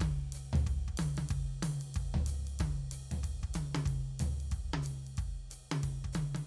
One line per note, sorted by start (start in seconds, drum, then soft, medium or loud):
0.01 kick medium
0.01 high tom loud
0.01 ride medium
0.33 hi-hat pedal medium
0.33 ride medium
0.54 floor tom loud
0.54 ride soft
0.67 kick medium
0.67 ride soft
0.88 kick medium
0.98 hi-hat pedal medium
0.98 high tom loud
0.98 ride medium
1.09 kick soft
1.18 high tom medium
1.18 ride medium
1.30 kick medium
1.30 ride medium
1.63 hi-hat pedal medium
1.63 high tom loud
1.63 ride loud
1.82 ride medium
1.95 kick medium
1.95 ride medium
2.15 floor tom loud
2.27 hi-hat pedal medium
2.27 ride medium
2.48 ride soft
2.60 kick medium
2.60 high tom loud
2.60 ride medium
2.92 hi-hat pedal medium
2.92 ride medium
3.12 floor tom medium
3.12 ride medium
3.24 kick medium
3.24 ride medium
3.44 kick medium
3.54 hi-hat pedal medium
3.54 high tom loud
3.54 ride medium
3.75 high tom loud
3.75 ride medium
3.86 kick medium
3.86 ride medium
4.20 floor tom loud
4.20 hi-hat pedal medium
4.20 ride medium
4.41 ride soft
4.52 kick medium
4.52 ride medium
4.74 high tom loud
4.83 hi-hat pedal medium
4.83 ride medium
5.07 ride soft
5.18 kick medium
5.18 ride medium
5.51 hi-hat pedal medium
5.51 ride medium
5.72 high tom loud
5.72 ride medium
5.84 kick medium
5.84 ride medium
6.05 kick medium
6.13 hi-hat pedal medium
6.13 high tom loud
6.13 ride medium
6.35 high tom medium
6.35 ride medium